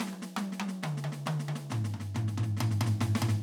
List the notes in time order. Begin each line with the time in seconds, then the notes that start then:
0.00 snare, high tom
0.07 snare
0.13 high tom
0.22 snare
0.36 snare, high tom
0.52 snare
0.60 high tom
0.68 snare
0.83 snare, mid tom
0.97 snare
1.04 mid tom
1.12 snare
1.26 snare, mid tom
1.39 snare
1.48 mid tom
1.55 snare
1.70 snare, floor tom
1.73 snare
1.84 snare
1.94 floor tom
2.00 snare
2.02 snare
2.14 snare, floor tom
2.28 snare
2.38 floor tom
2.43 snare
2.57 snare, floor tom
2.71 snare
2.81 floor tom
2.86 snare
3.01 snare, floor tom
3.15 snare
3.18 snare, floor tom
3.29 snare